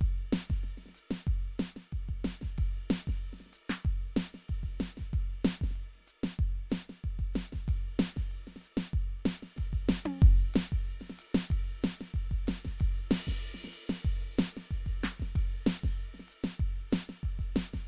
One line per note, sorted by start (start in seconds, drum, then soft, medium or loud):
0.01 kick medium
0.01 ride medium
0.33 snare loud
0.33 hi-hat pedal medium
0.33 ride loud
0.50 kick medium
0.50 snare soft
0.62 snare soft
0.62 hi-hat pedal soft
0.62 ride medium
0.78 snare soft
0.86 snare soft
0.89 snare soft
0.95 hi-hat pedal medium
0.95 ride medium
1.11 snare medium
1.27 kick medium
1.27 ride medium
1.43 ride soft
1.58 snare medium
1.58 hi-hat pedal medium
1.58 ride medium
1.76 snare soft
1.92 kick soft
1.92 ride medium
2.08 kick soft
2.08 ride soft
2.24 snare medium
2.24 hi-hat pedal medium
2.24 ride medium
2.41 kick soft
2.41 snare soft
2.58 kick medium
2.58 ride loud
2.90 snare loud
2.90 hi-hat pedal medium
2.90 ride loud
3.07 kick medium
3.07 snare soft
3.21 ride soft
3.33 snare soft
3.40 snare soft
3.46 snare soft
3.49 snare soft
3.52 snare soft
3.52 hi-hat pedal medium
3.52 ride medium
3.70 snare medium
3.85 kick medium
3.85 ride medium
4.01 ride soft
4.16 snare loud
4.16 hi-hat pedal medium
4.16 ride loud
4.34 snare soft
4.49 kick soft
4.49 ride medium
4.63 kick soft
4.63 ride soft
4.79 snare medium
4.79 hi-hat pedal medium
4.79 ride medium
4.97 kick soft
4.97 snare soft
5.13 kick medium
5.13 ride medium
5.44 snare loud
5.44 hi-hat pedal medium
5.44 ride medium
5.61 kick medium
5.61 snare soft
5.71 snare soft
5.76 ride medium
5.95 snare soft
5.97 snare soft
6.00 snare soft
6.07 hi-hat pedal medium
6.07 ride medium
6.24 snare medium
6.39 kick medium
6.39 ride medium
6.56 ride soft
6.70 snare loud
6.70 hi-hat pedal medium
6.70 ride medium
6.89 snare soft
7.04 kick soft
7.04 ride medium
7.19 kick soft
7.19 ride soft
7.34 snare medium
7.34 hi-hat pedal medium
7.34 ride medium
7.53 kick soft
7.53 snare soft
7.68 kick medium
7.68 ride loud
7.99 snare loud
7.99 hi-hat pedal medium
7.99 ride loud
8.16 kick medium
8.16 snare soft
8.31 ride medium
8.47 snare soft
8.56 snare soft
8.62 hi-hat pedal medium
8.62 ride medium
8.77 snare loud
8.93 kick medium
8.93 ride medium
9.10 ride soft
9.25 snare loud
9.25 hi-hat pedal medium
9.25 ride loud
9.43 snare soft
9.57 kick soft
9.57 snare soft
9.57 ride medium
9.73 kick medium
9.88 snare loud
9.88 hi-hat pedal medium
9.88 ride loud
10.06 high tom loud
10.21 kick loud
10.21 crash loud
10.54 snare loud
10.54 hi-hat pedal medium
10.54 ride loud
10.72 kick medium
10.87 ride soft
11.01 snare soft
11.10 snare soft
11.18 hi-hat pedal medium
11.18 ride loud
11.35 snare loud
11.50 kick medium
11.50 ride loud
11.68 ride soft
11.82 snare loud
11.82 hi-hat pedal medium
11.82 ride medium
12.01 snare soft
12.14 kick medium
12.14 ride medium
12.31 kick medium
12.31 ride medium
12.46 snare medium
12.46 hi-hat pedal medium
12.46 ride loud
12.65 kick soft
12.65 snare soft
12.80 kick medium
12.80 ride loud
13.11 snare loud
13.11 hi-hat pedal medium
13.11 ride medium
13.27 kick medium
13.27 snare soft
13.32 snare soft
13.42 ride soft
13.54 snare soft
13.64 snare soft
13.68 snare soft
13.73 hi-hat pedal medium
13.73 ride medium
13.89 snare medium
14.05 kick medium
14.05 ride medium
14.22 ride soft
14.38 snare loud
14.38 hi-hat pedal medium
14.38 ride loud
14.57 snare soft
14.71 kick soft
14.71 ride medium
14.86 kick soft
14.86 ride soft
15.02 snare medium
15.02 hi-hat pedal medium
15.02 ride loud
15.20 kick soft
15.20 snare soft
15.36 kick medium
15.36 ride loud
15.66 snare loud
15.66 hi-hat pedal medium
15.66 ride loud
15.84 kick medium
15.84 snare soft
15.97 ride medium
16.14 snare soft
16.20 snare soft
16.28 hi-hat pedal medium
16.28 ride medium
16.44 snare medium
16.60 kick medium
16.60 ride medium
16.76 ride soft
16.91 snare loud
16.91 hi-hat pedal medium
16.91 ride loud
17.09 snare soft
17.23 kick medium
17.23 ride medium
17.39 kick soft
17.39 ride medium
17.56 snare loud
17.56 hi-hat pedal medium
17.56 ride loud
17.74 kick soft
17.74 snare soft